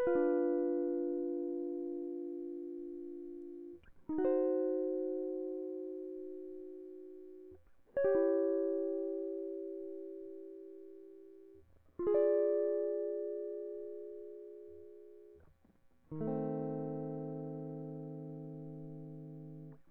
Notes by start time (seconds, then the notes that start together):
0.00 B4
0.07 F4
0.16 D4
4.10 D#4
4.19 F#4
4.25 C5
7.97 C#5
8.05 G4
8.15 E4
12.00 F4
12.07 G#4
12.15 D5
16.13 D#3
16.21 A3
16.28 C4